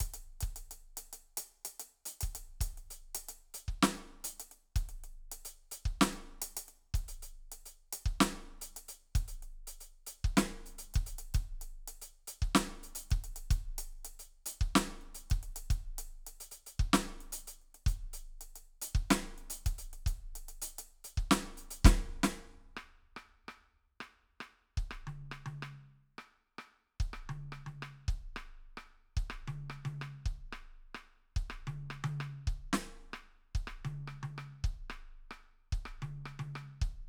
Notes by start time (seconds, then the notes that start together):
0.01 kick, closed hi-hat
0.14 closed hi-hat
0.41 kick, closed hi-hat
0.57 closed hi-hat
0.72 closed hi-hat
0.98 closed hi-hat
1.14 closed hi-hat
1.38 closed hi-hat
1.66 closed hi-hat
1.80 closed hi-hat
2.06 closed hi-hat
2.21 kick, closed hi-hat
2.36 closed hi-hat
2.61 kick, closed hi-hat
2.78 closed hi-hat
2.91 closed hi-hat
3.15 closed hi-hat
3.29 closed hi-hat
3.55 closed hi-hat
3.69 kick
3.83 snare
3.96 closed hi-hat
4.25 closed hi-hat
4.40 closed hi-hat
4.52 closed hi-hat
4.76 kick, closed hi-hat
4.90 closed hi-hat
5.04 closed hi-hat
5.32 closed hi-hat
5.46 closed hi-hat
5.72 closed hi-hat
5.86 kick
6.02 snare
6.14 closed hi-hat
6.42 closed hi-hat
6.57 closed hi-hat
6.69 closed hi-hat
6.95 kick, closed hi-hat
7.09 closed hi-hat
7.23 closed hi-hat
7.52 closed hi-hat
7.66 closed hi-hat
7.93 closed hi-hat
8.06 kick
8.21 snare
8.62 closed hi-hat
8.77 closed hi-hat
8.89 closed hi-hat
9.16 kick, closed hi-hat
9.29 closed hi-hat
9.43 closed hi-hat
9.68 closed hi-hat
9.81 closed hi-hat
10.07 closed hi-hat
10.25 kick
10.38 snare
10.67 closed hi-hat
10.79 closed hi-hat
10.95 kick, closed hi-hat
11.07 closed hi-hat
11.19 closed hi-hat
11.35 kick, closed hi-hat
11.62 closed hi-hat
11.88 closed hi-hat
12.02 closed hi-hat
12.28 closed hi-hat
12.43 kick
12.56 snare
12.84 closed hi-hat
12.96 closed hi-hat
13.11 kick, closed hi-hat
13.25 closed hi-hat
13.37 closed hi-hat
13.51 kick, closed hi-hat
13.79 closed hi-hat
14.05 closed hi-hat
14.20 closed hi-hat
14.47 closed hi-hat
14.62 kick
14.76 snare
15.02 closed hi-hat
15.15 closed hi-hat
15.31 kick, closed hi-hat
15.44 closed hi-hat
15.57 closed hi-hat
15.71 kick, closed hi-hat
15.99 closed hi-hat
16.27 closed hi-hat
16.41 closed hi-hat
16.52 closed hi-hat
16.67 closed hi-hat
16.80 kick
16.94 snare
17.21 closed hi-hat
17.33 closed hi-hat
17.48 closed hi-hat
17.62 closed hi-hat
17.75 closed hi-hat
17.87 closed hi-hat, kick
18.14 closed hi-hat
18.27 closed hi-hat
18.42 closed hi-hat
18.56 closed hi-hat
18.82 closed hi-hat
18.95 kick
19.11 snare
19.39 closed hi-hat
19.51 closed hi-hat
19.67 kick, closed hi-hat
19.79 closed hi-hat
19.94 closed hi-hat
20.07 kick, closed hi-hat
20.22 closed hi-hat
20.36 closed hi-hat
20.49 closed hi-hat
20.62 closed hi-hat
20.79 closed hi-hat
21.05 closed hi-hat
21.18 kick
21.32 snare
21.58 closed hi-hat
21.71 closed hi-hat
21.85 kick, snare
22.24 snare
22.77 cross-stick
23.17 cross-stick
23.49 cross-stick
24.01 cross-stick
24.41 cross-stick
24.78 kick
24.92 cross-stick
25.08 high tom
25.32 cross-stick
25.47 high tom
25.63 cross-stick
26.19 cross-stick
26.59 cross-stick
27.01 kick
27.14 cross-stick
27.30 high tom
27.53 cross-stick
27.67 high tom
27.83 cross-stick
28.09 kick
28.37 cross-stick
28.78 cross-stick
29.17 kick
29.31 cross-stick
29.48 high tom
29.71 cross-stick
29.86 high tom
30.02 cross-stick
30.26 kick
30.53 cross-stick
30.95 cross-stick
31.37 kick
31.51 cross-stick
31.68 high tom
31.91 cross-stick
32.05 high tom
32.21 cross-stick
32.48 kick
32.74 snare
33.14 cross-stick
33.56 kick
33.68 cross-stick
33.85 high tom
34.08 cross-stick
34.24 high tom
34.39 cross-stick
34.65 kick
34.91 cross-stick
35.32 cross-stick
35.73 kick
35.86 cross-stick
36.03 high tom
36.26 cross-stick
36.40 high tom
36.56 cross-stick
36.82 kick